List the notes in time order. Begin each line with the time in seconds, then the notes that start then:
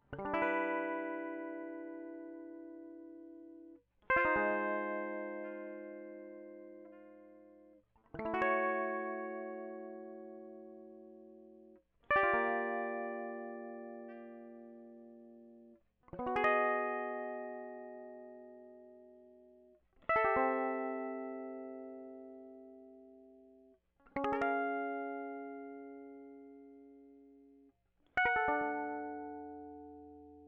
0.19 G3
0.25 D4
0.34 E4
0.42 B4
4.10 C5
4.17 F4
4.25 D#4
4.37 G#3
8.20 A3
8.26 E4
8.34 F#4
8.42 C#5
12.11 D5
12.16 G4
12.24 F4
12.34 A#3
16.20 B3
16.27 F#4
16.36 G#4
16.44 D#5
20.10 E5
20.16 A4
20.25 G4
20.37 C4
24.17 C#4
24.24 G#4 C#5
24.33 A4
24.41 A#4 F5
28.18 F#5
28.30 A#4
28.36 A4
28.49 D4